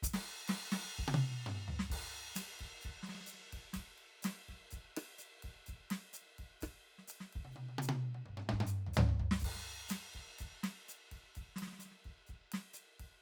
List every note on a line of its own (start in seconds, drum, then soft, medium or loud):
0.02 kick medium
0.02 hi-hat pedal loud
0.14 snare medium
0.14 crash medium
0.48 snare medium
0.48 crash medium
0.72 snare medium
0.72 crash medium
0.85 snare soft
0.99 kick soft
1.05 kick soft
1.05 high tom loud
1.14 high tom loud
1.46 mid tom medium
1.68 kick soft
1.68 floor tom medium
1.79 snare medium
1.90 kick soft
1.90 crash medium
1.96 kick soft
2.35 snare medium
2.35 hi-hat pedal medium
2.35 ride loud
2.59 kick soft
2.59 ride soft
2.66 kick soft
2.66 snare soft
2.81 kick soft
2.81 hi-hat pedal soft
2.81 ride soft
2.90 kick soft
3.03 snare soft
3.03 ride medium
3.09 snare soft
3.15 snare soft
3.21 snare soft
3.26 snare soft
3.26 hi-hat pedal medium
3.31 snare soft
3.31 ride soft
3.39 snare soft
3.45 snare soft
3.50 kick soft
3.50 snare soft
3.50 ride medium
3.58 kick soft
3.73 kick soft
3.73 snare medium
3.73 hi-hat pedal soft
3.73 ride medium
3.81 kick soft
3.98 ride soft
4.22 snare medium
4.22 hi-hat pedal medium
4.22 ride loud
4.49 kick soft
4.49 snare soft
4.49 ride soft
4.56 snare soft
4.61 snare soft
4.63 snare soft
4.70 kick soft
4.70 hi-hat pedal medium
4.70 ride soft
4.78 kick soft
4.97 cross-stick medium
4.97 ride loud
5.18 hi-hat pedal medium
5.43 kick soft
5.43 ride medium
5.49 kick soft
5.66 kick soft
5.66 hi-hat pedal soft
5.66 ride soft
5.74 kick soft
5.90 snare medium
5.90 ride medium
6.13 hi-hat pedal medium
6.13 ride soft
6.21 snare soft
6.38 kick soft
6.38 ride soft
6.44 kick soft
6.61 kick soft
6.61 cross-stick medium
6.61 hi-hat pedal soft
6.61 ride medium
6.98 snare soft
7.08 hi-hat pedal medium
7.08 ride medium
7.20 snare soft
7.33 kick soft
7.33 ride soft
7.45 high tom soft
7.52 hi-hat pedal soft
7.56 high tom medium
7.69 high tom soft
7.78 hi-hat pedal medium
7.78 high tom medium
7.89 high tom loud
8.14 high tom soft
8.26 kick soft
8.26 mid tom medium
8.37 mid tom medium
8.49 kick soft
8.49 mid tom loud
8.58 kick soft
8.58 mid tom loud
8.67 hi-hat pedal medium
8.87 floor tom medium
8.92 kick soft
8.92 hi-hat pedal medium
8.97 floor tom loud
9.09 floor tom medium
9.19 kick soft
9.19 floor tom medium
9.25 kick soft
9.31 snare loud
9.39 kick soft
9.39 hi-hat pedal medium
9.44 crash medium
9.49 kick soft
9.56 snare soft
9.88 snare medium
9.88 hi-hat pedal medium
9.88 ride loud
10.14 kick soft
10.14 ride soft
10.21 snare soft
10.27 snare soft
10.38 kick soft
10.38 hi-hat pedal soft
10.38 ride medium
10.46 kick soft
10.63 snare medium
10.63 ride medium
10.88 hi-hat pedal medium
10.88 ride soft
11.12 kick soft
11.12 ride soft
11.17 kick soft
11.35 kick soft
11.35 hi-hat pedal soft
11.35 ride soft
11.42 kick soft
11.56 snare medium
11.56 ride medium
11.62 snare medium
11.67 snare soft
11.73 snare soft
11.79 snare soft
11.79 hi-hat pedal medium
11.85 snare soft
11.91 snare soft
11.97 snare soft
12.01 kick soft
12.01 snare soft
12.01 ride soft
12.06 snare soft
12.11 snare soft
12.26 kick soft
12.26 hi-hat pedal soft
12.26 ride soft
12.34 kick soft
12.52 snare medium
12.52 ride medium
12.73 hi-hat pedal medium
12.80 snare soft
13.00 kick soft
13.00 ride soft